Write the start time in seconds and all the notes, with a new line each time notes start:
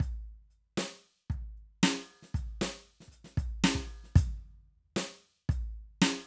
0.00 closed hi-hat, kick
0.27 closed hi-hat
0.50 closed hi-hat
0.77 closed hi-hat, snare
1.04 closed hi-hat
1.30 kick, closed hi-hat
1.57 closed hi-hat
1.83 closed hi-hat, snare
2.22 snare
2.34 closed hi-hat, kick
2.61 closed hi-hat, snare
3.00 snare
3.08 closed hi-hat, kick
3.24 snare
3.37 closed hi-hat, kick
3.64 closed hi-hat, snare
3.75 kick
3.87 snare
4.04 snare
4.15 closed hi-hat, kick
4.40 closed hi-hat
4.96 closed hi-hat, snare
5.49 closed hi-hat, kick
5.76 closed hi-hat
6.02 snare, closed hi-hat